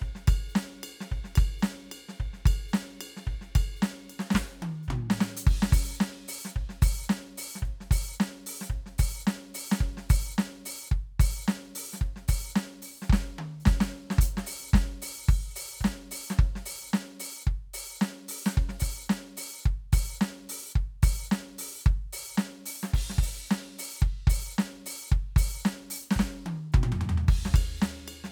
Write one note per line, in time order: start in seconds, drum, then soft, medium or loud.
0.02 kick medium
0.16 snare soft
0.28 kick loud
0.28 ride bell loud
0.50 hi-hat pedal soft
0.56 snare loud
0.84 ride bell loud
1.01 snare medium
1.12 kick medium
1.25 snare soft
1.36 kick loud
1.36 ride bell loud
1.60 snare loud
1.60 hi-hat pedal soft
1.92 ride bell loud
2.10 snare medium
2.21 kick medium
2.34 snare soft
2.46 kick loud
2.46 ride bell loud
2.69 hi-hat pedal soft
2.74 snare loud
3.02 ride bell loud
3.17 snare medium
3.28 kick medium
3.42 snare soft
3.56 kick loud
3.56 ride bell loud
3.77 hi-hat pedal soft
3.83 snare loud
4.11 ride bell medium
4.20 snare medium
4.31 kick medium
4.31 snare loud
4.36 snare loud
4.63 high tom loud
4.84 hi-hat pedal soft
4.89 kick medium
4.89 mid tom loud
5.11 snare loud
5.21 snare loud
5.38 closed hi-hat loud
5.47 kick loud
5.47 crash medium
5.63 snare loud
5.73 open hi-hat loud
5.73 kick loud
5.97 hi-hat pedal medium
6.01 snare loud
6.29 open hi-hat loud
6.46 snare medium
6.51 closed hi-hat soft
6.51 hi-hat pedal medium
6.57 kick medium
6.70 snare medium
6.83 open hi-hat loud
6.83 kick loud
7.06 hi-hat pedal medium
7.10 snare loud
7.38 open hi-hat loud
7.56 snare medium
7.56 hi-hat pedal medium
7.63 kick medium
7.63 closed hi-hat soft
7.81 snare soft
7.92 open hi-hat loud
7.92 kick loud
8.16 hi-hat pedal medium
8.21 snare loud
8.47 open hi-hat loud
8.62 snare medium
8.68 kick medium
8.68 hi-hat pedal medium
8.73 closed hi-hat soft
8.87 snare soft
8.99 open hi-hat loud
8.99 kick loud
9.23 hi-hat pedal medium
9.28 snare loud
9.55 open hi-hat loud
9.72 snare loud
9.78 kick medium
9.78 hi-hat pedal medium
9.98 snare medium
10.10 open hi-hat loud
10.10 kick loud
10.34 hi-hat pedal medium
10.39 snare loud
10.66 open hi-hat loud
10.88 kick medium
10.88 closed hi-hat soft
10.88 hi-hat pedal medium
11.20 open hi-hat loud
11.20 kick loud
11.46 snare loud
11.46 hi-hat pedal medium
11.76 open hi-hat loud
11.94 snare medium
11.99 kick medium
11.99 hi-hat pedal medium
12.17 snare soft
12.29 open hi-hat loud
12.29 kick loud
12.53 snare loud
12.53 hi-hat pedal soft
12.83 open hi-hat loud
13.03 snare medium
13.03 hi-hat pedal soft
13.10 kick loud
13.10 snare loud
13.39 high tom medium
13.61 hi-hat pedal soft
13.66 kick loud
13.66 snare loud
13.81 snare loud
14.11 snare loud
14.19 closed hi-hat loud
14.19 kick loud
14.38 snare medium
14.47 open hi-hat loud
14.71 kick loud
14.71 hi-hat pedal medium
14.75 snare loud
15.03 open hi-hat loud
15.29 kick loud
15.56 open hi-hat loud
15.81 kick medium
15.81 snare loud
15.81 hi-hat pedal medium
16.12 open hi-hat loud
16.31 snare medium
16.31 hi-hat pedal medium
16.40 kick loud
16.56 snare medium
16.66 open hi-hat loud
16.91 snare loud
16.91 hi-hat pedal medium
17.21 open hi-hat loud
17.44 kick medium
17.44 hi-hat pedal soft
17.74 open hi-hat loud
18.00 snare loud
18.00 hi-hat pedal medium
18.29 open hi-hat loud
18.47 snare loud
18.53 hi-hat pedal medium
18.58 kick loud
18.70 snare medium
18.81 open hi-hat loud
18.81 kick medium
19.06 hi-hat pedal soft
19.10 snare loud
19.38 open hi-hat loud
19.64 kick loud
19.64 hi-hat pedal medium
19.93 open hi-hat loud
19.93 kick loud
20.18 snare loud
20.18 hi-hat pedal soft
20.50 open hi-hat loud
20.72 kick loud
20.72 hi-hat pedal soft
21.03 open hi-hat loud
21.03 kick loud
21.28 hi-hat pedal medium
21.32 snare loud
21.59 open hi-hat loud
21.84 kick loud
21.84 hi-hat pedal medium
22.14 open hi-hat loud
22.36 snare loud
22.36 hi-hat pedal medium
22.66 open hi-hat loud
22.84 snare medium
22.89 hi-hat pedal medium
22.94 kick loud
22.94 crash loud
23.11 snare medium
23.19 kick loud
23.24 open hi-hat loud
23.48 snare loud
23.48 hi-hat pedal medium
23.79 open hi-hat loud
24.01 kick loud
24.01 hi-hat pedal medium
24.28 open hi-hat loud
24.28 kick loud
24.55 snare loud
24.55 hi-hat pedal medium
24.87 open hi-hat loud
25.10 kick loud
25.10 hi-hat pedal soft
25.37 open hi-hat loud
25.37 kick loud
25.62 hi-hat pedal soft
25.66 snare loud
25.91 open hi-hat loud
26.12 snare loud
26.12 hi-hat pedal soft
26.17 kick medium
26.17 snare loud
26.47 high tom loud
26.73 kick loud
26.73 hi-hat pedal soft
26.73 mid tom loud
26.84 mid tom loud
26.93 floor tom loud
27.02 floor tom loud
27.10 floor tom loud
27.18 floor tom loud
27.29 kick loud
27.29 crash medium
27.46 snare medium
27.55 kick loud
27.55 ride bell loud
27.78 hi-hat pedal soft
27.83 snare loud
28.09 ride bell loud
28.25 snare medium